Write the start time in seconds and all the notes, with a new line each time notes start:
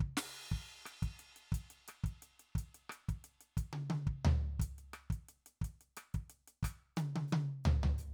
0.01 kick
0.17 snare, crash
0.52 kick
0.86 cross-stick, closed hi-hat
1.03 kick, closed hi-hat
1.20 closed hi-hat
1.37 closed hi-hat
1.52 kick, closed hi-hat
1.71 closed hi-hat
1.88 cross-stick, closed hi-hat
2.04 kick, closed hi-hat
2.23 closed hi-hat
2.40 closed hi-hat
2.56 kick, closed hi-hat
2.75 closed hi-hat
2.90 cross-stick, closed hi-hat
3.09 kick, closed hi-hat
3.25 closed hi-hat
3.41 closed hi-hat
3.57 kick, closed hi-hat
3.73 high tom
3.90 high tom
4.07 kick
4.25 floor tom
4.60 kick, closed hi-hat
4.79 closed hi-hat
4.94 cross-stick, closed hi-hat
5.10 kick, closed hi-hat
5.29 closed hi-hat
5.47 closed hi-hat
5.62 kick, closed hi-hat
5.81 closed hi-hat
5.97 cross-stick, closed hi-hat
6.15 kick, closed hi-hat
6.30 closed hi-hat
6.48 closed hi-hat
6.63 closed hi-hat, kick, cross-stick
6.97 hi-hat pedal, high tom
7.16 high tom
7.28 hi-hat pedal
7.33 high tom
7.64 floor tom, hi-hat pedal
7.84 floor tom
7.98 hi-hat pedal